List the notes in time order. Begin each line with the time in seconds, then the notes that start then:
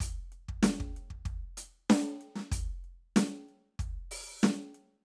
0.01 closed hi-hat, kick
0.33 closed hi-hat
0.49 kick
0.63 closed hi-hat, snare
0.81 kick
0.97 closed hi-hat
1.11 kick
1.26 kick, closed hi-hat
1.58 open hi-hat
1.90 closed hi-hat, snare, hi-hat pedal
2.22 closed hi-hat
2.36 snare
2.40 snare
2.52 closed hi-hat, kick
2.85 closed hi-hat
3.17 closed hi-hat, snare
3.49 closed hi-hat
3.80 kick, closed hi-hat
4.12 open hi-hat
4.44 closed hi-hat, snare, hi-hat pedal
4.75 closed hi-hat